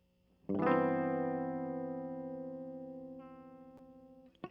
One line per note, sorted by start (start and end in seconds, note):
0.51 3.60 G2
0.59 4.26 E3
0.59 4.30 B3
0.67 4.32 C4